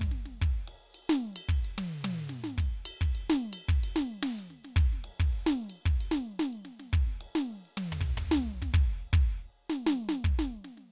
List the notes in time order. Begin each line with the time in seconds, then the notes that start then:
0.01 kick, hi-hat pedal, ride
0.12 snare
0.26 snare
0.42 kick, ride
0.53 snare, hi-hat pedal
0.68 ride
0.95 ride bell
1.09 snare, hi-hat pedal
1.37 ride bell
1.49 kick
1.64 hi-hat pedal, ride bell
1.79 high tom
1.89 hi-hat pedal
2.05 high tom
2.18 hi-hat pedal, ride
2.30 snare
2.45 snare, ride
2.59 kick, ride bell
2.72 hi-hat pedal
2.86 ride bell
3.02 kick
3.16 ride bell
3.28 snare, hi-hat pedal
3.54 ride bell
3.69 kick
3.83 hi-hat pedal, ride bell
3.97 snare
4.23 snare
4.37 hi-hat pedal, ride bell
4.49 kick, snare
4.65 snare, ride
4.77 kick, ride bell
4.91 snare, hi-hat pedal
5.05 ride
5.20 kick
5.34 ride
5.46 snare, hi-hat pedal
5.70 ride bell
5.86 kick
6.01 hi-hat pedal, ride bell
6.12 snare
6.40 snare
6.53 hi-hat pedal, ride bell
6.66 snare
6.80 snare, ride bell
6.94 kick, ride
7.06 snare, hi-hat pedal
7.21 ride
7.36 snare
7.51 ride
7.60 hi-hat pedal
7.66 ride
7.78 high tom
7.84 hi-hat pedal
7.93 floor tom
8.01 kick
8.17 floor tom, hi-hat pedal
8.32 snare
8.62 kick, snare
8.75 kick, hi-hat pedal, ride
9.14 kick
9.32 hi-hat pedal
9.70 snare
9.85 snare, hi-hat pedal
10.10 snare
10.22 kick, snare
10.40 snare
10.65 snare
10.78 snare